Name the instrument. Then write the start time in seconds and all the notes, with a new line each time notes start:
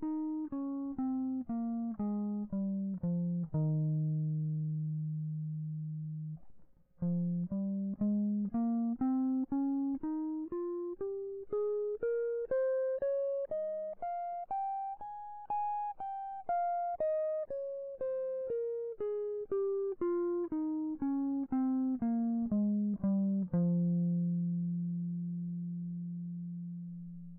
electric guitar
0.03 D#4
0.53 C#4
0.99 C4
1.50 A#3
2.01 G#3
2.54 G3
3.05 F3
3.56 D#3
7.04 F3
7.53 G3
8.02 G#3
8.55 A#3
9.02 C4
9.53 C#4
10.04 D#4
10.53 F4
11.02 G4
11.53 G#4
12.04 A#4
12.52 C5
13.03 C#5
13.52 D#5
14.03 F5
14.51 G5
15.02 G#5
15.51 G#5
16.01 G5
16.50 F5
17.01 D#5
17.51 C#5
18.02 C5
18.51 A#4
19.01 G#4
19.52 G4
20.02 F4
20.53 D#4
21.03 C#4
21.53 C4
22.03 A#3
22.53 G#3
23.05 G3
23.55 F3